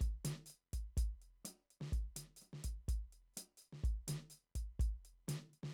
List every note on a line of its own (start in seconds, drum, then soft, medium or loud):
0.01 kick soft
0.01 closed hi-hat soft
0.25 closed hi-hat medium
0.25 snare soft
0.46 closed hi-hat soft
0.46 hi-hat pedal medium
0.73 closed hi-hat medium
0.73 kick soft
0.97 closed hi-hat medium
0.97 kick soft
1.22 closed hi-hat soft
1.45 closed hi-hat medium
1.45 snare soft
1.71 closed hi-hat soft
1.81 snare soft
1.92 kick soft
1.92 closed hi-hat soft
2.16 closed hi-hat medium
2.16 snare soft
2.37 hi-hat pedal medium
2.42 snare soft
2.42 closed hi-hat soft
2.53 snare soft
2.64 closed hi-hat medium
2.64 kick soft
2.88 closed hi-hat medium
2.88 kick soft
3.13 closed hi-hat soft
3.34 closed hi-hat medium
3.34 snare soft
3.34 hi-hat pedal soft
3.57 hi-hat pedal medium
3.62 closed hi-hat soft
3.73 snare soft
3.84 kick soft
3.84 closed hi-hat soft
4.08 closed hi-hat medium
4.08 snare soft
4.30 closed hi-hat soft
4.30 hi-hat pedal medium
4.56 closed hi-hat soft
4.56 kick soft
4.80 closed hi-hat soft
4.80 kick soft
5.05 closed hi-hat soft
5.28 closed hi-hat medium
5.28 snare soft
5.53 closed hi-hat soft
5.63 snare soft